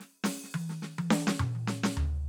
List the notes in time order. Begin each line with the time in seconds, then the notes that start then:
0.00 snare, open hi-hat
0.24 open hi-hat, snare
0.43 snare
0.54 high tom
0.69 snare
0.82 snare
0.98 open hi-hat, high tom
1.10 snare
1.27 snare
1.39 mid tom
1.55 high tom
1.67 snare
1.83 snare
1.97 floor tom